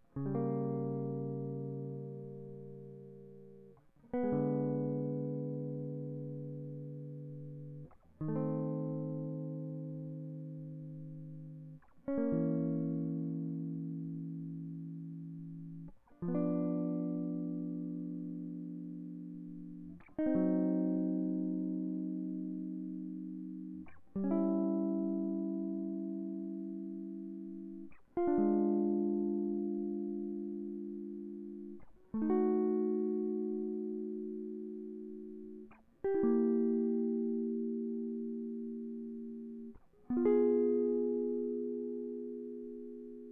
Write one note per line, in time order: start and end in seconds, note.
0.17 3.14 C#3
0.26 3.75 G3
0.35 3.66 A#3
4.14 7.90 B3
4.24 7.87 G#3
4.33 7.88 D3
8.22 11.80 D#3
8.29 10.63 A3
8.36 11.70 C4
12.08 15.91 C#4
12.18 15.44 A#3
12.33 15.92 E3
16.23 20.00 F3
16.29 19.96 B3
16.35 19.97 D4
20.19 23.87 D#4
20.27 23.87 C4
20.36 23.86 F#3
24.16 27.88 G3
24.24 27.91 C#4
24.31 27.89 E4
28.17 31.80 F4
28.28 31.84 D4
28.39 31.78 G#3
32.14 35.70 A3
32.22 35.66 D#4
32.30 35.69 F#4
36.05 39.72 G4
36.15 39.72 E4
36.24 39.73 A#3
40.11 43.31 B3
40.17 43.31 F4
40.26 43.31 G#4